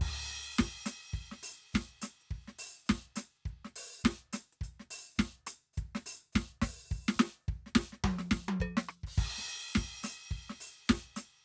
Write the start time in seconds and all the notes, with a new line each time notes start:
0.01 kick, ride
0.31 open hi-hat
0.57 kick, snare, hi-hat pedal
0.86 closed hi-hat, snare
1.06 closed hi-hat
1.13 kick, closed hi-hat
1.31 snare
1.43 open hi-hat
1.73 kick, snare, hi-hat pedal
2.02 closed hi-hat, snare
2.21 closed hi-hat
2.31 kick, closed hi-hat
2.48 snare
2.59 open hi-hat
2.86 snare, hi-hat pedal
2.90 kick
3.16 closed hi-hat, snare
3.37 closed hi-hat
3.45 kick, closed hi-hat
3.65 snare
3.76 open hi-hat
4.01 kick, hi-hat pedal
4.05 snare
4.33 closed hi-hat, snare
4.53 closed hi-hat
4.61 closed hi-hat, kick
4.80 snare
4.90 open hi-hat
5.16 kick, snare, hi-hat pedal
5.47 closed hi-hat, cross-stick
5.73 hi-hat pedal
5.77 kick, closed hi-hat
5.95 snare
6.06 open hi-hat
6.33 kick, snare, hi-hat pedal
6.62 open hi-hat, kick, snare
6.91 kick, open hi-hat
7.08 snare
7.16 kick, snare
7.48 kick
7.66 snare
7.75 kick, snare
7.92 snare
8.04 kick, hi-hat pedal, high tom
8.19 snare
8.31 kick, snare
8.48 high tom
8.60 kick, percussion
8.77 snare
8.89 cross-stick
9.03 kick, crash
9.18 kick, ride
9.38 snare
9.48 closed hi-hat
9.74 kick, snare, hi-hat pedal
10.03 open hi-hat, snare
10.26 hi-hat pedal
10.31 kick, closed hi-hat
10.50 snare
10.60 open hi-hat
10.87 kick, snare, hi-hat pedal
11.16 open hi-hat, snare